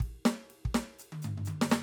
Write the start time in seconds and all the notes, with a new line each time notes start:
0.00 kick, ride
0.25 snare, ride
0.50 ride
0.65 kick
0.74 snare, ride
0.99 hi-hat pedal, ride
1.12 high tom
1.22 floor tom, hi-hat pedal
1.38 floor tom
1.45 hi-hat pedal, high tom
1.61 snare
1.69 snare, hi-hat pedal